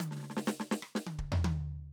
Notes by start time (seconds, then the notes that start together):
0.02 hi-hat pedal, high tom
0.11 snare
0.16 snare
0.19 snare
0.23 snare
0.30 snare
0.37 snare
0.45 snare, hi-hat pedal
0.60 snare
0.71 snare
0.82 cross-stick
0.95 snare
1.07 high tom
1.19 kick
1.32 floor tom
1.44 high tom